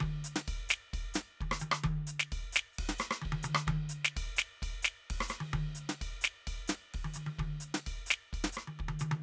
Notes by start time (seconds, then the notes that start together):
0.01 kick, high tom
0.25 hi-hat pedal
0.36 snare
0.48 kick, ride bell
0.70 snare, hi-hat pedal
0.94 kick, ride bell
1.15 snare, hi-hat pedal
1.41 kick, high tom
1.52 cross-stick
1.60 hi-hat pedal, high tom
1.72 cross-stick
1.84 kick, high tom
2.07 hi-hat pedal
2.20 snare
2.33 kick, ride bell
2.39 kick
2.53 snare, hi-hat pedal
2.74 hi-hat pedal
2.79 kick, ride
2.89 snare
2.99 cross-stick, hi-hat pedal
3.11 cross-stick
3.22 kick, high tom
3.33 high tom
3.43 hi-hat pedal, high tom
3.55 cross-stick
3.68 kick, high tom
3.90 hi-hat pedal
4.05 snare
4.17 kick, ride bell
4.37 snare, hi-hat pedal
4.63 kick, ride bell
4.70 kick
4.83 snare, hi-hat pedal
5.11 kick, ride
5.21 cross-stick
5.29 cross-stick, hi-hat pedal
5.41 high tom
5.54 kick, high tom
5.76 hi-hat pedal
5.90 snare
6.02 kick, ride bell
6.22 snare, hi-hat pedal
6.48 kick, ride bell
6.68 snare, hi-hat pedal
6.94 kick, ride
7.05 high tom
7.14 hi-hat pedal, high tom
7.27 high tom
7.39 kick, high tom
7.61 hi-hat pedal
7.75 snare
7.87 kick, ride bell
8.07 hi-hat pedal
8.11 snare
8.33 kick, ride bell
8.45 snare
8.53 hi-hat pedal
8.57 cross-stick
8.68 high tom
8.80 kick, high tom
8.89 high tom
9.00 hi-hat pedal, high tom
9.12 high tom